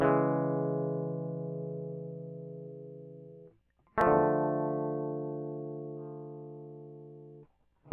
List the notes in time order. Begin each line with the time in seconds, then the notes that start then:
0.00 C#3 E3
0.04 E2 G#3
3.98 F3 A3
4.08 D3
4.14 E2